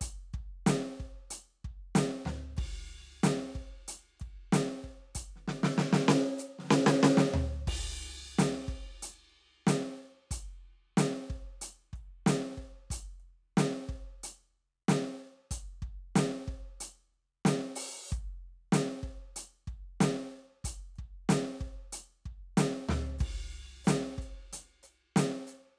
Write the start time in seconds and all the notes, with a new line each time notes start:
0.01 closed hi-hat, kick
0.33 kick, closed hi-hat
0.66 closed hi-hat, snare
1.00 kick
1.31 closed hi-hat
1.64 kick
1.95 closed hi-hat, snare
2.25 snare, floor tom
2.57 kick, crash
3.23 closed hi-hat, snare
3.55 kick
3.88 closed hi-hat
4.20 kick, closed hi-hat
4.53 closed hi-hat, snare
4.84 kick
5.15 closed hi-hat, kick
5.36 snare
5.48 snare
5.63 snare
5.78 snare
5.93 snare
6.08 snare
6.38 hi-hat pedal
6.59 snare
6.64 snare
6.67 snare
6.71 snare
6.86 snare
7.03 snare, hi-hat pedal
7.17 snare
7.34 floor tom
7.67 kick, crash
8.39 closed hi-hat, snare
8.68 kick, closed hi-hat
9.02 closed hi-hat
9.30 closed hi-hat
9.67 closed hi-hat, snare
9.90 snare
10.31 closed hi-hat, kick
10.97 closed hi-hat, snare
11.30 kick
11.61 closed hi-hat
11.93 kick, closed hi-hat
12.26 closed hi-hat, snare
12.50 snare
12.57 kick, closed hi-hat
12.90 closed hi-hat, kick
13.20 closed hi-hat
13.57 closed hi-hat, snare
13.89 kick, closed hi-hat
14.23 closed hi-hat
14.88 closed hi-hat, snare
15.51 closed hi-hat, kick
15.82 kick, closed hi-hat
16.16 closed hi-hat, snare
16.46 kick, closed hi-hat
16.80 closed hi-hat
17.14 closed hi-hat
17.45 closed hi-hat, snare
17.76 open hi-hat
18.10 closed hi-hat, kick, hi-hat pedal
18.72 closed hi-hat, snare
19.03 kick
19.36 closed hi-hat
19.67 kick, closed hi-hat
20.01 closed hi-hat, snare
20.21 snare
20.64 closed hi-hat, kick
20.96 kick, closed hi-hat
21.29 closed hi-hat, snare
21.61 kick, closed hi-hat
21.92 closed hi-hat
22.24 kick, closed hi-hat
22.57 closed hi-hat, snare
22.89 snare, floor tom
23.19 kick, hi-hat pedal, crash
23.84 closed hi-hat, snare, hi-hat pedal
24.18 closed hi-hat, kick
24.52 closed hi-hat, snare
24.83 hi-hat pedal
25.16 closed hi-hat, snare
25.47 closed hi-hat, hi-hat pedal